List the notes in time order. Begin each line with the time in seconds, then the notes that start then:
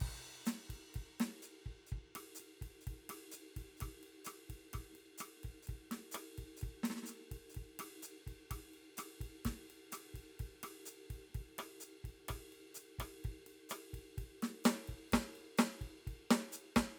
0.01 kick, crash
0.08 kick
0.46 snare, hi-hat pedal, ride
0.70 kick, ride
0.76 snare
0.93 kick, hi-hat pedal, ride
1.20 snare, ride
1.43 hi-hat pedal
1.66 kick, ride
1.72 kick
1.87 hi-hat pedal
1.92 kick
1.98 kick
2.16 cross-stick, ride
2.36 hi-hat pedal
2.40 ride
2.62 kick, ride
2.67 kick
2.81 hi-hat pedal
2.87 kick, ride
2.93 kick
3.10 cross-stick, ride
3.32 hi-hat pedal, ride
3.57 kick, ride
3.62 kick
3.77 hi-hat pedal, ride
3.82 kick, cross-stick
3.88 kick
4.04 ride
4.25 cross-stick, hi-hat pedal, ride
4.50 kick, ride
4.74 kick, cross-stick, ride
4.80 kick
4.93 snare, ride
5.18 cross-stick, hi-hat pedal, ride
5.37 snare
5.44 kick, ride
5.50 kick
5.63 hi-hat pedal
5.68 kick, ride
5.75 kick
5.92 snare, ride
6.12 cross-stick, hi-hat pedal, ride
6.38 kick, ride
6.44 kick
6.57 hi-hat pedal
6.62 kick, ride
6.69 kick
6.84 snare, ride
6.90 snare
6.97 snare
7.03 snare, hi-hat pedal
7.09 snare, ride
7.15 snare
7.21 snare
7.27 snare
7.32 kick, snare, ride
7.37 kick, snare
7.50 hi-hat pedal
7.55 kick, ride
7.62 kick
7.80 cross-stick, ride
8.03 hi-hat pedal, ride
8.27 kick, ride
8.32 kick
8.51 kick, cross-stick, ride
8.57 kick
8.74 ride
8.98 cross-stick, hi-hat pedal, ride
9.21 kick, ride
9.26 kick
9.45 kick, snare, ride
9.52 kick
9.71 ride
9.92 cross-stick, hi-hat pedal, ride
10.15 kick, ride
10.20 kick
10.40 kick, ride
10.46 kick
10.64 cross-stick, ride
10.86 hi-hat pedal, ride
11.11 kick, ride
11.16 kick
11.30 snare
11.35 kick, ride
11.41 kick
11.59 cross-stick, ride
11.81 hi-hat pedal, ride
12.05 kick, ride
12.10 kick
12.29 kick, cross-stick, ride
12.36 kick
12.53 ride
12.75 hi-hat pedal, ride
12.99 kick, cross-stick, ride
13.04 kick
13.25 kick, ride
13.31 kick
13.37 snare
13.47 ride
13.70 cross-stick, hi-hat pedal, ride
13.94 kick, ride
13.99 kick
14.18 kick, ride
14.24 kick
14.43 snare, ride
14.65 snare, hi-hat pedal, ride
14.88 kick, ride
14.94 kick
15.09 hi-hat pedal
15.13 kick, snare, ride
15.19 kick
15.36 ride
15.58 snare, hi-hat pedal, ride
15.82 kick, ride
15.87 kick
16.07 kick, ride
16.13 kick
16.31 snare, ride
16.40 snare
16.53 hi-hat pedal, ride
16.77 kick, snare, ride
16.82 kick